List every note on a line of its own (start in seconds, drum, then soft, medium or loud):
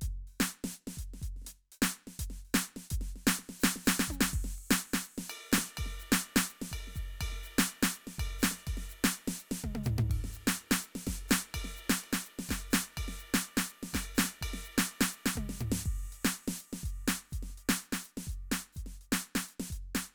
0.01 closed hi-hat medium
0.01 kick soft
0.01 snare soft
0.08 kick soft
0.27 open hi-hat soft
0.40 snare loud
0.40 hi-hat pedal soft
0.52 closed hi-hat soft
0.64 snare medium
0.72 closed hi-hat soft
0.72 hi-hat pedal medium
0.87 snare medium
0.97 closed hi-hat medium
0.97 kick soft
1.14 snare soft
1.22 closed hi-hat medium
1.22 kick soft
1.36 snare soft
1.42 snare soft
1.45 open hi-hat medium
1.45 snare soft
1.47 snare soft
1.72 open hi-hat soft
1.72 hi-hat pedal soft
1.82 snare loud
1.95 closed hi-hat soft
2.07 snare soft
2.19 closed hi-hat loud
2.19 kick soft
2.30 snare soft
2.45 open hi-hat soft
2.54 snare loud
2.61 hi-hat pedal soft
2.67 closed hi-hat soft
2.76 snare soft
2.91 closed hi-hat loud
2.91 kick soft
2.98 kick soft
3.01 kick soft
3.01 snare soft
3.16 snare soft
3.27 snare loud
3.33 hi-hat pedal medium
3.39 snare soft
3.49 snare soft
3.59 hi-hat pedal medium
3.64 snare loud
3.76 snare soft
3.85 snare loud
3.85 hi-hat pedal medium
4.00 snare loud
4.08 kick soft
4.08 hi-hat pedal medium
4.08 high tom medium
4.21 snare loud
4.33 kick medium
4.33 crash loud
4.40 kick soft
4.40 snare soft
4.51 hi-hat pedal soft
4.58 ride soft
4.71 snare loud
4.78 hi-hat pedal medium
4.94 snare medium
5.02 hi-hat pedal medium
5.02 ride soft
5.18 snare medium
5.28 hi-hat pedal medium
5.28 ride bell loud
5.52 snare loud
5.52 ride loud
5.58 snare medium
5.77 kick soft
5.77 ride bell loud
5.86 snare soft
5.99 hi-hat pedal medium
5.99 ride soft
6.12 snare loud
6.21 hi-hat pedal soft
6.26 ride soft
6.36 snare loud
6.48 hi-hat pedal medium
6.48 ride soft
6.62 snare medium
6.72 kick soft
6.72 ride bell loud
6.87 snare soft
6.94 kick soft
6.94 hi-hat pedal medium
6.94 ride medium
7.21 kick soft
7.21 ride bell loud
7.27 kick soft
7.30 kick soft
7.30 snare soft
7.43 hi-hat pedal medium
7.48 ride soft
7.58 snare loud
7.73 ride soft
7.83 snare loud
7.92 hi-hat pedal medium
7.92 ride soft
8.07 snare soft
8.19 kick soft
8.19 ride bell loud
8.24 kick soft
8.27 kick soft
8.39 hi-hat pedal medium
8.39 ride loud
8.43 snare loud
8.51 snare soft
8.67 kick soft
8.67 ride bell medium
8.73 kick soft
8.77 snare soft
8.89 hi-hat pedal medium
8.89 ride soft
9.04 snare loud
9.17 ride medium
9.28 snare medium
9.38 hi-hat pedal medium
9.38 ride medium
9.51 snare medium
9.59 hi-hat pedal soft
9.64 kick soft
9.64 mid tom medium
9.70 kick soft
9.75 mid tom loud
9.84 floor tom loud
9.84 hi-hat pedal medium
9.98 floor tom loud
10.10 kick soft
10.10 ride loud
10.16 kick soft
10.18 kick soft
10.24 snare soft
10.33 hi-hat pedal medium
10.37 ride medium
10.47 snare loud
10.61 ride soft
10.71 snare loud
10.81 hi-hat pedal medium
10.81 ride medium
10.95 snare medium
11.07 kick soft
11.07 snare medium
11.07 ride loud
11.28 snare loud
11.28 hi-hat pedal medium
11.28 ride medium
11.54 kick soft
11.54 ride bell loud
11.64 snare soft
11.76 hi-hat pedal medium
11.76 ride medium
11.90 snare loud
12.04 ride bell medium
12.13 snare medium
12.24 hi-hat pedal medium
12.24 ride medium
12.39 snare medium
12.49 kick soft
12.49 snare medium
12.49 ride bell medium
12.70 snare loud
12.70 hi-hat pedal medium
12.70 ride medium
12.97 kick soft
12.97 ride bell loud
13.05 kick soft
13.05 snare soft
13.18 hi-hat pedal medium
13.23 ride soft
13.34 snare loud
13.47 ride soft
13.57 snare loud
13.67 hi-hat pedal medium
13.67 ride medium
13.83 snare medium
13.94 kick soft
13.94 snare medium
13.94 ride bell loud
14.15 snare loud
14.15 hi-hat pedal medium
14.15 ride medium
14.24 snare soft
14.42 kick soft
14.42 ride bell loud
14.54 snare soft
14.63 hi-hat pedal medium
14.63 ride soft
14.78 snare loud
14.92 ride medium
15.01 snare loud
15.11 hi-hat pedal medium
15.11 ride medium
15.26 snare loud
15.36 kick soft
15.36 mid tom medium
15.49 snare soft
15.58 floor tom medium
15.58 hi-hat pedal medium
15.72 snare medium
15.85 kick soft
15.85 crash medium
15.92 kick soft
15.96 kick soft
16.12 closed hi-hat medium
16.25 snare loud
16.36 closed hi-hat soft
16.48 snare medium
16.57 closed hi-hat soft
16.57 hi-hat pedal medium
16.73 snare medium
16.84 closed hi-hat medium
16.84 kick soft
17.08 closed hi-hat medium
17.08 snare loud
17.30 closed hi-hat medium
17.30 kick soft
17.30 hi-hat pedal soft
17.43 snare soft
17.50 snare soft
17.58 closed hi-hat soft
17.69 snare loud
17.82 closed hi-hat soft
17.93 snare medium
18.02 closed hi-hat soft
18.02 hi-hat pedal medium
18.17 snare medium
18.27 closed hi-hat medium
18.27 kick soft
18.52 closed hi-hat medium
18.52 snare medium
18.73 kick soft
18.73 hi-hat pedal soft
18.77 closed hi-hat soft
18.86 snare soft
19.01 closed hi-hat soft
19.12 snare loud
19.25 closed hi-hat soft
19.35 snare medium
19.45 closed hi-hat soft
19.45 hi-hat pedal soft
19.60 snare medium
19.70 closed hi-hat medium
19.70 kick soft
19.95 closed hi-hat medium
19.95 snare medium